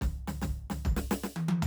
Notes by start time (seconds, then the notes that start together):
0.01 kick, snare, floor tom
0.28 snare, floor tom
0.42 kick, snare, floor tom
0.70 snare, floor tom
0.85 kick, floor tom
0.97 snare
1.11 snare
1.23 snare
1.36 high tom
1.48 high tom
1.62 floor tom